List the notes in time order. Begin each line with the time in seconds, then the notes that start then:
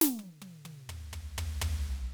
0.01 snare
0.23 high tom
0.46 high tom
0.69 mid tom
0.93 floor tom
1.17 floor tom
1.42 floor tom
1.66 floor tom